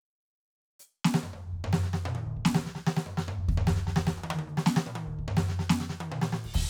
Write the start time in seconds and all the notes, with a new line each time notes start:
0.80 hi-hat pedal
1.05 snare
1.15 snare
1.23 floor tom
1.34 floor tom
1.45 kick
1.53 kick
1.65 floor tom
1.73 snare
1.84 snare
1.94 snare
2.06 mid tom
2.15 high tom
2.26 kick
2.37 kick
2.46 snare
2.55 snare
2.67 snare
2.76 snare
2.87 snare
3.07 floor tom
3.18 snare
3.29 floor tom
3.39 kick
3.49 kick, hi-hat pedal
3.58 floor tom
3.68 snare
3.76 snare
3.87 snare
3.97 snare
4.07 snare
4.18 high tom
4.24 high tom
4.31 high tom
4.39 high tom
4.48 cross-stick
4.58 snare
4.67 snare
4.77 snare
4.87 mid tom
4.96 high tom
5.07 kick
5.19 kick
5.28 floor tom
5.37 snare
5.49 snare
5.60 snare
5.70 snare
5.81 snare
5.90 snare
6.01 high tom
6.12 mid tom
6.22 snare
6.33 snare
6.45 kick, crash
6.54 kick, crash